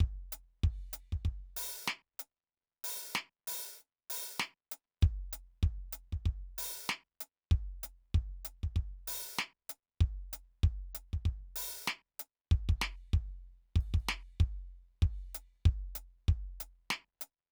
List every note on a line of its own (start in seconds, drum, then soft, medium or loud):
0.01 kick medium
0.33 closed hi-hat loud
0.64 kick medium
0.68 crash soft
0.94 closed hi-hat loud
1.13 kick soft
1.26 kick medium
1.57 open hi-hat loud
1.87 snare loud
1.87 hi-hat pedal medium
2.20 closed hi-hat loud
2.85 open hi-hat loud
3.15 snare loud
3.15 hi-hat pedal soft
3.48 open hi-hat loud
3.80 hi-hat pedal soft
4.11 open hi-hat loud
4.39 snare loud
4.39 hi-hat pedal soft
4.72 open hi-hat loud
5.02 kick medium
5.02 hi-hat pedal soft
5.33 closed hi-hat loud
5.64 kick medium
5.93 closed hi-hat loud
6.13 kick soft
6.26 kick medium
6.59 open hi-hat loud
6.89 snare loud
6.89 hi-hat pedal medium
7.21 closed hi-hat loud
7.52 kick medium
7.84 closed hi-hat loud
8.15 kick medium
8.46 closed hi-hat loud
8.64 kick soft
8.77 kick medium
9.08 open hi-hat loud
9.39 snare loud
9.39 hi-hat pedal medium
9.70 closed hi-hat loud
10.01 kick medium
10.34 closed hi-hat loud
10.64 kick medium
10.95 closed hi-hat loud
11.14 kick soft
11.26 kick medium
11.57 open hi-hat loud
11.88 snare loud
11.88 hi-hat pedal medium
12.20 closed hi-hat loud
12.52 kick medium
12.70 kick medium
12.76 crash soft
12.82 snare loud
13.14 kick medium
13.76 kick medium
13.76 snare soft
13.76 crash soft
13.81 ride soft
13.95 kick medium
14.01 crash soft
14.01 ride soft
14.09 snare loud
14.41 kick medium
15.03 kick medium
15.08 crash soft
15.35 closed hi-hat loud
15.66 kick medium
15.96 closed hi-hat loud
16.29 kick medium
16.61 open hi-hat loud
16.91 snare loud
16.91 hi-hat pedal medium
17.22 closed hi-hat loud